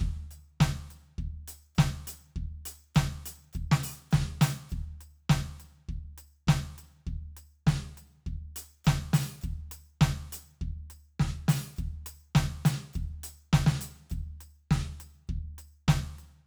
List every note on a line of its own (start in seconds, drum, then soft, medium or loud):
0.01 kick medium
0.31 percussion medium
0.60 kick medium
0.60 snare loud
0.60 percussion soft
0.90 percussion medium
1.18 kick medium
1.18 percussion soft
1.48 percussion loud
1.75 kick medium
1.75 snare loud
1.75 percussion soft
2.07 percussion loud
2.36 kick medium
2.36 percussion soft
2.66 percussion loud
2.95 kick medium
2.95 snare loud
2.95 percussion medium
3.26 percussion loud
3.53 kick medium
3.53 percussion medium
3.72 snare loud
3.83 percussion loud
4.11 kick medium
4.11 snare loud
4.11 percussion medium
4.41 snare loud
4.41 percussion loud
4.69 kick medium
4.69 percussion soft
5.01 percussion medium
5.30 kick medium
5.30 snare loud
5.60 percussion medium
5.89 kick medium
5.89 percussion soft
6.18 percussion medium
6.47 kick medium
6.47 snare loud
6.78 percussion medium
7.07 kick medium
7.07 percussion soft
7.37 percussion medium
7.67 kick medium
7.67 snare loud
7.97 percussion medium
8.26 kick medium
8.26 percussion soft
8.56 percussion loud
8.85 kick medium
8.85 snare loud
8.85 percussion medium
9.13 snare loud
9.13 percussion loud
9.42 kick medium
9.42 percussion medium
9.71 percussion loud
10.01 kick medium
10.01 snare loud
10.32 percussion loud
10.61 kick medium
10.61 percussion soft
10.90 percussion medium
11.20 kick medium
11.20 snare loud
11.48 snare loud
11.48 percussion loud
11.77 kick medium
11.77 percussion soft
12.06 percussion loud
12.35 kick medium
12.35 snare loud
12.65 snare loud
12.65 percussion loud
12.93 kick medium
12.93 percussion soft
12.97 percussion soft
13.23 percussion loud
13.53 kick medium
13.53 snare loud
13.66 snare loud
13.78 kick soft
13.78 percussion loud
14.10 kick medium
14.10 percussion medium
14.13 crash soft
14.13 percussion soft
14.41 percussion medium
14.71 kick medium
14.71 snare loud
15.00 percussion medium
15.28 kick medium
15.28 percussion soft
15.58 percussion medium
15.88 kick medium
15.88 snare loud
16.19 percussion soft